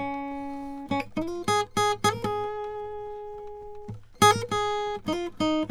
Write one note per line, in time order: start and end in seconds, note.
0.01 0.89 C#4
0.92 1.06 C#4
1.18 1.29 E4
1.29 1.48 F4
1.49 1.67 G#4
1.78 1.99 G#4
2.05 2.12 G#4
2.25 2.48 G#4
4.23 4.32 G#4
4.32 4.46 A#4
4.53 5.00 G#4
5.09 5.32 F4
5.41 5.68 D#4